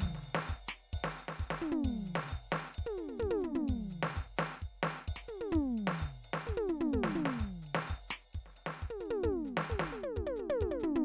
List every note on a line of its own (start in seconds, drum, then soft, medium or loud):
0.01 kick soft
0.01 ride loud
0.09 kick soft
0.12 kick soft
0.12 snare soft
0.23 hi-hat pedal medium
0.23 ride soft
0.35 snare medium
0.43 hi-hat pedal soft
0.43 ride bell medium
0.49 kick soft
0.67 snare medium
0.67 hi-hat pedal loud
0.88 hi-hat pedal soft
0.93 kick soft
0.93 ride loud
1.01 kick soft
1.01 snare medium
1.14 hi-hat pedal medium
1.14 ride soft
1.29 snare medium
1.35 hi-hat pedal soft
1.40 kick soft
1.40 ride bell soft
1.51 snare medium
1.60 floor tom medium
1.60 hi-hat pedal medium
1.72 floor tom medium
1.85 kick soft
1.85 ride medium
1.93 kick soft
2.06 hi-hat pedal medium
2.06 ride soft
2.16 snare medium
2.26 hi-hat pedal soft
2.26 ride medium
2.32 kick soft
2.51 snare medium
2.51 hi-hat pedal loud
2.75 kick soft
2.75 ride medium
2.85 kick soft
2.85 mid tom medium
2.97 hi-hat pedal loud
2.97 mid tom soft
3.09 mid tom soft
3.17 hi-hat pedal soft
3.17 mid tom loud
3.23 kick soft
3.31 mid tom loud
3.41 floor tom medium
3.41 hi-hat pedal medium
3.55 floor tom medium
3.68 kick soft
3.68 ride bell medium
3.78 kick soft
3.90 hi-hat pedal medium
3.90 ride soft
4.03 snare medium
4.16 kick soft
4.16 ride bell medium
4.25 kick soft
4.37 snare medium
4.37 hi-hat pedal loud
4.58 hi-hat pedal soft
4.62 kick soft
4.62 ride bell soft
4.83 snare medium
4.83 hi-hat pedal medium
5.03 hi-hat pedal soft
5.08 kick soft
5.08 ride medium
5.16 kick soft
5.16 snare soft
5.28 kick soft
5.28 hi-hat pedal medium
5.28 mid tom medium
5.41 mid tom medium
5.52 kick soft
5.52 floor tom loud
5.64 kick soft
5.78 hi-hat pedal medium
5.78 ride medium
5.88 snare medium
5.99 kick soft
5.99 ride bell medium
6.24 hi-hat pedal medium
6.24 ride medium
6.34 snare medium
6.47 kick soft
6.47 mid tom medium
6.57 kick soft
6.57 mid tom loud
6.68 floor tom medium
6.68 hi-hat pedal medium
6.68 ride soft
6.80 floor tom loud
6.90 hi-hat pedal soft
6.90 mid tom medium
6.95 kick soft
7.04 snare medium
7.13 floor tom medium
7.13 hi-hat pedal medium
7.26 snare medium
7.40 kick soft
7.40 ride bell medium
7.49 kick soft
7.62 hi-hat pedal loud
7.67 ride soft
7.75 snare medium
7.88 kick soft
7.88 ride bell medium
8.08 snare loud
8.08 hi-hat pedal medium
8.34 kick soft
8.34 ride bell soft
8.46 snare soft
8.56 hi-hat pedal medium
8.56 ride soft
8.67 snare medium
8.79 kick soft
8.79 ride bell soft
8.90 mid tom medium
9.00 hi-hat pedal medium
9.00 mid tom medium
9.06 ride soft
9.10 mid tom loud
9.23 kick soft
9.23 mid tom loud
9.33 kick soft
9.45 hi-hat pedal medium
9.45 mid tom soft
9.57 snare medium
9.68 hi-hat pedal soft
9.68 mid tom medium
9.72 kick soft
9.78 kick soft
9.80 kick soft
9.80 snare medium
9.91 hi-hat pedal medium
9.91 mid tom medium
10.04 high tom medium
10.16 kick soft
10.16 mid tom medium
10.27 high tom medium
10.36 hi-hat pedal loud
10.36 mid tom medium
10.50 high tom loud
10.56 hi-hat pedal soft
10.61 kick soft
10.61 mid tom medium
10.69 kick soft
10.69 high tom medium
10.80 floor tom loud
10.80 hi-hat pedal loud
10.95 floor tom loud